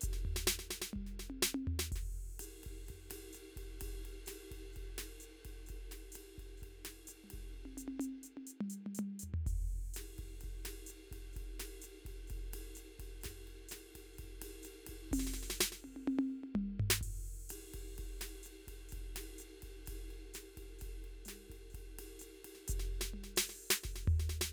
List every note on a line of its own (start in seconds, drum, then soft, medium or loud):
0.01 kick soft
0.01 hi-hat pedal loud
0.01 ride soft
0.10 kick soft
0.10 snare soft
0.25 floor tom medium
0.36 snare medium
0.47 snare loud
0.59 snare soft
0.71 snare medium
0.82 snare medium
0.93 kick soft
0.93 mid tom medium
1.01 kick soft
1.06 snare soft
1.19 snare soft
1.30 high tom medium
1.42 snare loud
1.54 high tom loud
1.67 floor tom medium
1.79 snare medium
1.92 kick soft
1.92 snare soft
1.92 crash medium
1.98 kick soft
2.39 hi-hat pedal medium
2.39 ride medium
2.63 kick soft
2.63 ride soft
2.87 kick soft
2.87 hi-hat pedal soft
2.87 ride soft
2.95 kick soft
3.10 snare soft
3.10 ride medium
3.33 hi-hat pedal medium
3.33 ride soft
3.57 kick soft
3.57 ride soft
3.80 kick soft
3.80 snare soft
3.80 hi-hat pedal soft
3.80 ride medium
3.87 kick soft
4.05 ride soft
4.26 snare soft
4.26 hi-hat pedal medium
4.26 ride medium
4.51 kick soft
4.51 ride soft
4.73 kick soft
4.73 hi-hat pedal soft
4.73 ride soft
4.98 snare soft
4.98 ride medium
5.20 hi-hat pedal medium
5.20 ride soft
5.45 kick soft
5.45 ride soft
5.66 kick soft
5.66 hi-hat pedal soft
5.66 ride soft
5.75 kick soft
5.91 snare soft
5.91 ride medium
6.12 snare soft
6.12 hi-hat pedal medium
6.12 ride medium
6.38 kick soft
6.38 ride soft
6.57 hi-hat pedal soft
6.62 kick soft
6.62 ride soft
6.85 snare soft
6.85 ride medium
7.07 hi-hat pedal medium
7.07 ride soft
7.24 mid tom soft
7.30 kick soft
7.30 ride medium
7.38 kick soft
7.54 high tom soft
7.65 high tom soft
7.77 hi-hat pedal medium
7.77 high tom medium
7.88 high tom medium
8.00 hi-hat pedal medium
8.00 high tom loud
8.23 hi-hat pedal medium
8.23 high tom soft
8.37 high tom medium
8.47 hi-hat pedal medium
8.61 mid tom medium
8.70 hi-hat pedal medium
8.86 mid tom medium
8.95 hi-hat pedal medium
8.99 mid tom loud
9.19 hi-hat pedal loud
9.23 floor tom soft
9.34 floor tom medium
9.47 kick soft
9.47 hi-hat pedal medium
9.47 crash medium
9.54 kick soft
9.94 snare soft
9.94 hi-hat pedal medium
9.94 ride medium
10.18 kick soft
10.18 ride soft
10.24 kick soft
10.40 kick soft
10.40 hi-hat pedal soft
10.40 ride soft
10.49 kick soft
10.65 snare soft
10.65 ride medium
10.86 hi-hat pedal medium
10.86 ride soft
11.12 kick soft
11.12 ride soft
11.16 kick soft
11.33 kick soft
11.33 hi-hat pedal soft
11.33 ride soft
11.41 kick soft
11.59 snare soft
11.59 ride medium
11.82 hi-hat pedal medium
11.82 ride soft
12.05 kick soft
12.05 ride soft
12.10 kick soft
12.27 kick soft
12.27 hi-hat pedal soft
12.27 ride soft
12.36 kick soft
12.53 snare soft
12.53 ride medium
12.75 hi-hat pedal medium
12.75 ride soft
12.99 kick soft
12.99 ride soft
13.21 snare soft
13.21 hi-hat pedal soft
13.21 ride medium
13.26 kick soft
13.31 kick soft
13.47 ride soft
13.69 snare soft
13.69 hi-hat pedal medium
13.69 ride medium
13.95 kick soft
13.95 ride soft
14.14 hi-hat pedal soft
14.19 kick soft
14.19 ride soft
14.24 kick soft
14.41 snare soft
14.41 ride medium
14.63 hi-hat pedal medium
14.63 ride soft
14.87 kick soft
14.87 ride medium
15.12 kick soft
15.12 hi-hat pedal loud
15.12 high tom loud
15.19 snare soft
15.27 snare soft
15.34 snare soft
15.43 snare soft
15.50 snare medium
15.61 snare loud
15.72 snare soft
15.84 kick soft
15.84 high tom medium
15.96 high tom medium
16.07 kick soft
16.07 high tom loud
16.19 high tom loud
16.30 high tom soft
16.44 high tom medium
16.55 kick soft
16.55 mid tom loud
16.80 kick soft
16.80 floor tom medium
16.85 kick soft
16.90 snare loud
17.01 kick soft
17.01 crash medium
17.07 kick soft
17.49 hi-hat pedal medium
17.49 ride medium
17.74 kick soft
17.74 ride medium
17.94 hi-hat pedal soft
17.98 kick soft
17.98 ride soft
18.04 kick soft
18.21 snare soft
18.21 ride medium
18.43 hi-hat pedal medium
18.43 ride soft
18.68 kick soft
18.68 ride soft
18.89 kick soft
18.89 hi-hat pedal medium
18.89 ride soft
18.98 kick soft
19.16 snare soft
19.16 ride medium
19.38 hi-hat pedal medium
19.38 ride soft
19.62 kick soft
19.62 ride soft
19.86 kick soft
19.86 snare soft
19.86 hi-hat pedal soft
19.86 ride medium
19.93 kick soft
20.11 ride soft
20.34 snare soft
20.34 hi-hat pedal medium
20.34 ride medium
20.57 kick soft
20.57 ride soft
20.79 kick soft
20.79 snare soft
20.79 hi-hat pedal soft
20.79 ride soft
20.87 kick soft
21.04 ride soft
21.25 snare soft
21.25 hi-hat pedal medium
21.25 mid tom soft
21.25 ride medium
21.29 snare soft
21.50 kick soft
21.50 ride soft
21.70 hi-hat pedal soft
21.74 kick soft
21.74 ride soft
21.79 kick soft
21.98 snare soft
21.98 ride medium
22.19 hi-hat pedal medium
22.19 ride soft
22.34 snare soft
22.45 ride medium
22.55 snare soft
22.68 kick soft
22.68 hi-hat pedal loud
22.68 ride medium
22.76 kick soft
22.76 snare soft
23.01 snare medium
23.14 mid tom soft
23.24 snare soft
23.36 snare loud
23.36 hi-hat pedal loud
23.49 snare soft
23.70 snare loud
23.84 kick soft
23.84 snare soft
23.90 kick soft
23.96 snare soft
24.08 floor tom loud
24.20 snare soft
24.29 snare medium
24.41 snare loud